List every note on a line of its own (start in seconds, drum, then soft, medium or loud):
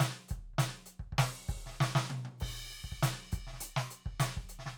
0.00 closed hi-hat loud
0.00 snare loud
0.29 closed hi-hat medium
0.29 kick medium
0.54 kick soft
0.58 closed hi-hat loud
0.58 snare loud
0.86 closed hi-hat medium
0.99 kick soft
1.12 kick medium
1.18 open hi-hat loud
1.18 snare loud
1.48 open hi-hat medium
1.48 kick medium
1.66 snare soft
1.71 snare soft
1.80 snare loud
1.85 hi-hat pedal medium
1.95 snare loud
2.10 high tom loud
2.25 high tom medium
2.38 hi-hat pedal soft
2.38 crash loud
2.42 kick medium
2.70 closed hi-hat soft
2.84 kick soft
2.92 kick soft
3.03 closed hi-hat loud
3.03 snare loud
3.32 closed hi-hat medium
3.32 kick medium
3.47 snare soft
3.53 snare soft
3.59 closed hi-hat loud
3.59 snare soft
3.76 snare medium
3.91 closed hi-hat medium
4.06 kick medium
4.20 closed hi-hat loud
4.20 snare loud
4.37 kick medium
4.49 closed hi-hat medium
4.59 snare medium
4.66 snare medium
4.73 snare soft